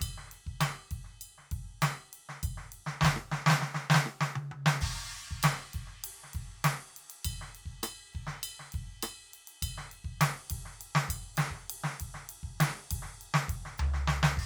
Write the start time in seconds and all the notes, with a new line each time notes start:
0.01 kick, ride bell
0.08 kick
0.12 kick
0.18 snare
0.27 snare, ride
0.46 kick
0.60 snare, hi-hat pedal, ride bell
0.74 snare
0.91 kick, ride
0.97 kick
1.04 snare
1.21 hi-hat pedal, ride bell
1.38 snare
1.42 snare
1.51 kick, ride
1.58 kick
1.81 snare, hi-hat pedal, ride bell
2.13 ride
2.29 snare
2.43 kick, hi-hat pedal, ride bell
2.51 kick
2.54 kick, snare
2.72 ride
2.86 snare
3.01 kick, snare, hi-hat pedal
3.04 snare
3.16 cross-stick
3.31 snare
3.46 snare
3.50 snare
3.61 snare
3.74 snare
3.90 snare
3.94 snare
4.06 cross-stick
4.21 snare
4.35 high tom
4.51 high tom
4.66 snare
4.81 kick, crash
4.88 kick
4.93 kick
5.31 kick
5.43 snare, hi-hat pedal, ride bell
5.54 snare
5.73 kick, ride
5.81 kick
5.87 snare
6.04 hi-hat pedal, ride
6.23 snare
6.33 kick, ride
6.41 kick
6.64 snare, hi-hat pedal, ride
6.88 snare
6.96 ride
7.03 snare
7.10 ride
7.25 kick, hi-hat pedal, ride bell
7.32 kick
7.34 kick
7.41 snare
7.55 ride
7.65 kick
7.83 cross-stick, hi-hat pedal, ride bell
8.13 kick, ride
8.27 snare
8.43 ride bell
8.59 snare
8.72 kick, ride
8.81 kick
9.03 cross-stick, hi-hat pedal, ride bell
9.33 ride
9.47 ride
9.62 kick, ride bell
9.69 kick
9.78 snare
9.86 snare
9.91 ride
10.04 kick
10.10 kick
10.21 snare, hi-hat pedal, ride
10.50 kick, ride
10.57 kick
10.65 snare
10.81 ride
10.95 snare
11.05 kick, snare
11.10 ride bell
11.15 kick
11.34 snare, hi-hat pedal, ride
11.50 kick
11.54 snare
11.70 ride
11.84 snare
12.00 kick, hi-hat pedal, ride
12.14 snare
12.29 ride
12.43 kick
12.60 snare, hi-hat pedal, ride
12.71 snare
12.91 kick, ride
12.99 kick, snare
13.20 hi-hat pedal, ride
13.34 snare
13.48 kick, ride
13.56 kick
13.59 kick
13.65 snare
13.77 floor tom, hi-hat pedal
13.94 snare
14.07 snare
14.23 snare
14.37 kick, crash